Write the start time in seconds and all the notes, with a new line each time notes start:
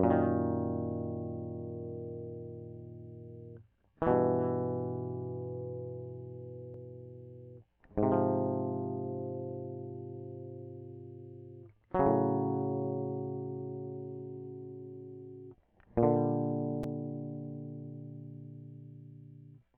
0.00 F#2
0.05 A#2
0.11 D#3
4.03 E3
4.08 G2 B2
7.99 G#2
8.04 C3
8.13 F3
11.95 F#3
12.01 C#3
12.08 A2
15.99 A#2
16.04 D3
16.17 G3